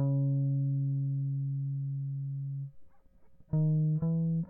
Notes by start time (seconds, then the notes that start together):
0.00 C#3
3.55 D#3
4.04 E3